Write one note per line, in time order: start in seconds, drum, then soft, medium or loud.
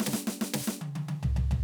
0.00 snare loud
0.06 snare loud
0.13 snare loud
0.27 snare loud
0.41 snare loud
0.54 snare loud
0.67 snare loud
0.81 high tom loud
0.95 high tom loud
1.08 high tom loud
1.23 floor tom loud
1.36 floor tom loud
1.51 floor tom loud